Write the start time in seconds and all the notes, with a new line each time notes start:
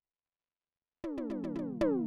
1.04 floor tom, high tom
1.18 floor tom, high tom
1.30 floor tom, high tom
1.44 floor tom, high tom
1.55 floor tom, high tom
1.81 floor tom, high tom